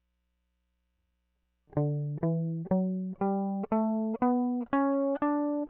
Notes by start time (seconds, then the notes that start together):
1.77 D3
2.24 E3
2.71 F#3
3.22 G3
3.72 A3
4.22 B3
4.73 C#4
5.22 D4